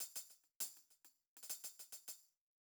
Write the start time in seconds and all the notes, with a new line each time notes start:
0.01 percussion
0.17 percussion
0.31 percussion
0.45 percussion
0.61 percussion
0.78 percussion
0.91 percussion
1.05 percussion
1.38 percussion
1.44 percussion
1.50 percussion
1.65 percussion
1.80 percussion
1.93 percussion
2.09 percussion